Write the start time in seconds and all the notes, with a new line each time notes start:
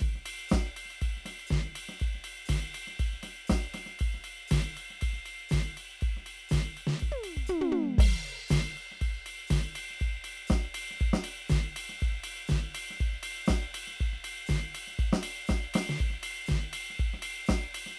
0.01 kick, ride
0.16 snare
0.26 ride
0.50 kick, snare, hi-hat pedal, ride
0.77 ride
0.86 snare
0.91 ride
1.02 kick, ride
1.18 snare
1.26 snare, ride
1.40 ride
1.48 snare, hi-hat pedal
1.52 kick, ride
1.67 snare
1.76 ride
1.90 snare
2.00 kick, ride
2.16 snare
2.25 ride
2.46 kick, snare, hi-hat pedal, ride
2.61 snare
2.75 ride
2.88 snare
3.00 kick, ride
3.14 snare
3.24 snare, ride
3.48 kick, snare, hi-hat pedal, ride
3.74 snare, ride
3.87 snare
4.00 kick, ride
4.15 snare
4.25 ride
4.49 kick, snare, hi-hat pedal, ride
4.78 ride
4.91 snare
5.02 kick, ride
5.14 snare
5.26 ride
5.50 snare, hi-hat pedal, ride
5.54 kick
5.78 ride
6.02 kick, ride
6.17 snare
6.27 ride
6.50 kick, snare, hi-hat pedal, ride
6.78 ride
6.88 snare
7.00 kick, ride
7.12 high tom
7.24 ride
7.38 kick
7.48 floor tom, hi-hat pedal
7.61 floor tom
7.72 floor tom
7.99 kick, crash, ride
8.26 ride
8.49 kick, snare, hi-hat pedal, ride
8.78 ride
8.92 snare
9.02 kick, ride
9.27 ride
9.48 kick, snare, hi-hat pedal, ride
9.76 ride
9.91 snare
10.01 kick, ride
10.25 ride
10.48 kick, snare, hi-hat pedal, ride
10.75 ride
10.92 snare
11.01 kick, ride
11.14 snare
11.25 ride
11.50 kick, snare, hi-hat pedal, ride
11.77 ride
11.90 snare
12.01 kick, ride
12.13 snare
12.24 ride
12.49 kick, snare, hi-hat pedal, ride
12.75 ride
12.91 snare
13.01 kick, ride
13.14 snare
13.24 ride
13.47 kick, snare, hi-hat pedal, ride
13.75 ride
13.88 snare
14.01 kick, ride
14.14 snare
14.25 ride
14.47 kick, snare, hi-hat pedal, ride
14.75 ride
14.88 snare
15.00 kick, ride
15.14 snare
15.24 ride
15.48 kick, snare, hi-hat pedal, ride
15.75 snare, ride
15.90 snare
16.00 kick, ride
16.11 snare
16.14 snare
16.24 ride
16.47 snare, hi-hat pedal, ride
16.52 kick
16.64 snare
16.74 ride
16.91 snare
17.00 kick, ride
17.14 snare
17.23 ride
17.47 kick, snare, hi-hat pedal, ride
17.75 ride
17.87 snare